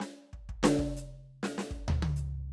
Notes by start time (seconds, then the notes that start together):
0.00 snare
0.33 kick
0.49 kick
0.63 snare, high tom
0.79 kick
0.97 hi-hat pedal
1.43 snare
1.58 snare
1.71 kick
1.88 floor tom
2.02 high tom
2.16 hi-hat pedal